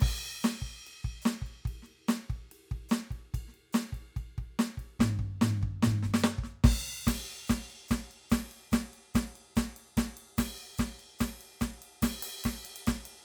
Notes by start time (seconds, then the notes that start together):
0.01 kick, crash
0.43 snare, hi-hat pedal, ride bell
0.62 kick
0.87 ride bell
1.05 kick, ride
1.22 snare, hi-hat pedal
1.28 ride bell
1.42 kick
1.47 ride
1.65 kick, ride
1.82 snare, ride
2.08 snare, hi-hat pedal, ride bell
2.30 kick, ride
2.52 ride
2.71 kick, ride
2.89 snare, hi-hat pedal, ride bell
3.11 kick, ride
3.34 kick, ride bell
3.48 snare
3.54 ride
3.73 snare, hi-hat pedal, ride bell
3.93 kick, ride
4.16 kick, ride bell
4.38 kick, ride
4.59 snare, ride bell
4.77 kick, ride
5.00 kick, snare, floor tom
5.19 kick
5.41 snare, floor tom
5.62 kick, floor tom
5.83 snare, floor tom
5.87 kick
6.03 kick, snare
6.14 snare
6.19 hi-hat pedal
6.24 snare
6.38 kick
6.44 snare
6.64 kick, snare, crash
7.05 kick, snare, hi-hat pedal, crash
7.47 kick, snare, hi-hat pedal, crash
7.70 crash
7.88 kick, snare, hi-hat pedal, crash
8.11 crash
8.30 kick, snare, hi-hat pedal, crash
8.51 crash
8.72 kick, snare, hi-hat pedal, crash
8.93 crash
9.14 kick, snare, hi-hat pedal, crash
9.36 crash
9.56 kick, snare, hi-hat pedal, crash
9.77 crash
9.97 kick, snare, hi-hat pedal, crash
10.17 crash
10.37 kick, snare, hi-hat pedal, crash
10.58 crash
10.77 kick, snare, hi-hat pedal, crash
11.00 crash
11.19 kick, snare, hi-hat pedal, crash
11.41 crash
11.61 kick, snare, hi-hat pedal, crash
11.82 crash
12.02 kick, snare, hi-hat pedal, crash
12.12 kick
12.23 crash
12.44 kick, snare, hi-hat pedal, crash
12.54 kick
12.65 crash
12.76 crash
12.87 kick, snare, hi-hat pedal, crash
13.06 crash